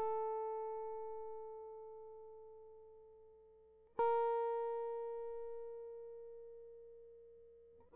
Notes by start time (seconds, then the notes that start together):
0.00 A4
3.99 A#4